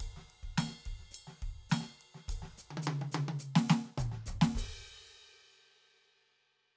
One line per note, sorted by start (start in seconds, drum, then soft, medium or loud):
0.01 kick soft
0.01 hi-hat pedal medium
0.01 ride loud
0.06 kick soft
0.17 snare soft
0.31 ride soft
0.44 kick soft
0.58 snare medium
0.58 hi-hat pedal medium
0.58 ride bell loud
0.68 snare soft
0.87 kick soft
0.87 ride soft
0.93 kick soft
1.00 snare soft
1.12 hi-hat pedal medium
1.12 ride bell medium
1.28 snare soft
1.37 snare soft
1.43 kick soft
1.43 ride soft
1.49 kick soft
1.52 kick soft
1.70 snare loud
1.70 hi-hat pedal medium
1.70 ride bell loud
1.82 snare soft
2.02 ride medium
2.15 snare soft
2.29 kick soft
2.29 hi-hat pedal medium
2.29 ride loud
2.35 kick soft
2.39 kick soft
2.43 snare soft
2.47 kick soft
2.59 hi-hat pedal medium
2.72 high tom medium
2.78 high tom loud
2.83 hi-hat pedal loud
2.88 high tom loud
3.02 high tom medium
3.13 hi-hat pedal loud
3.13 high tom loud
3.29 high tom loud
3.40 hi-hat pedal loud
3.57 snare loud
3.69 snare loud
3.69 hi-hat pedal loud
3.85 snare soft
3.99 kick soft
3.99 hi-hat pedal loud
3.99 mid tom loud
4.05 kick soft
4.13 snare soft
4.27 kick soft
4.27 hi-hat pedal loud
4.27 floor tom medium
4.34 kick soft
4.42 snare loud
4.56 kick medium
4.56 hi-hat pedal loud
4.56 crash medium
4.64 kick soft